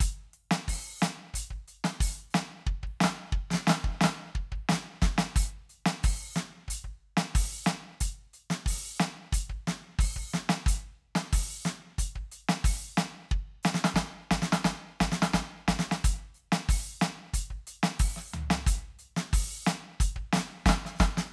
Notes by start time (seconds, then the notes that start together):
0.01 closed hi-hat, kick
0.34 closed hi-hat
0.52 snare
0.68 open hi-hat, kick
1.01 closed hi-hat, snare, hi-hat pedal
1.34 closed hi-hat, kick
1.51 kick
1.68 closed hi-hat
1.85 snare
2.01 open hi-hat, kick
2.31 kick, snare, hi-hat pedal
2.67 kick
2.84 kick
2.88 crash, ride
3.01 snare
3.04 snare
3.33 kick
3.51 snare
3.54 snare
3.68 snare
3.70 snare
3.85 kick, snare
4.01 snare
4.04 snare
4.36 kick
4.52 kick
4.56 crash
4.69 snare
4.73 snare
5.02 kick, snare
5.18 snare
5.36 open hi-hat, kick
5.70 closed hi-hat, kick
5.86 snare
5.92 cross-stick
6.04 open hi-hat, kick
6.36 snare, hi-hat pedal
6.68 closed hi-hat, kick
6.85 kick
7.18 snare
7.36 open hi-hat, kick
7.66 snare, hi-hat pedal
8.01 closed hi-hat, kick
8.34 closed hi-hat
8.51 snare
8.67 open hi-hat, kick
8.98 snare, hi-hat pedal
9.33 closed hi-hat, kick
9.50 kick
9.68 snare
9.99 open hi-hat, kick, snare
10.17 kick
10.31 snare, hi-hat pedal
10.50 snare
10.67 closed hi-hat, kick
11.16 snare
11.33 open hi-hat, kick
11.66 closed hi-hat, snare, hi-hat pedal
11.99 closed hi-hat, kick
12.16 kick
12.32 closed hi-hat
12.49 snare
12.65 open hi-hat, kick
12.98 snare
13.29 kick, hi-hat pedal
13.63 kick, snare, hi-hat pedal
13.75 snare
13.85 snare
13.95 kick, snare
14.31 kick, snare
14.43 snare
14.53 snare
14.65 kick, snare, hi-hat pedal
15.00 kick, snare, hi-hat pedal
15.12 snare
15.23 snare
15.34 kick, snare
15.68 kick, snare
15.80 snare
15.92 snare
16.05 closed hi-hat, kick
16.35 hi-hat pedal
16.53 snare
16.69 open hi-hat, kick
17.01 snare, hi-hat pedal
17.34 closed hi-hat, kick
17.51 kick
17.68 closed hi-hat
17.84 snare
18.00 kick, open hi-hat
18.17 snare
18.33 hi-hat pedal, mid tom
18.51 snare
18.67 closed hi-hat, kick
18.99 closed hi-hat
19.17 snare
19.34 open hi-hat, kick
19.67 closed hi-hat, snare, hi-hat pedal
20.01 closed hi-hat, kick
20.17 kick
20.33 snare, hi-hat pedal
20.37 snare
20.66 kick, snare, hi-hat pedal
20.70 snare
20.86 snare
20.91 cross-stick
20.96 snare, hi-hat pedal
21.01 kick, snare
21.18 snare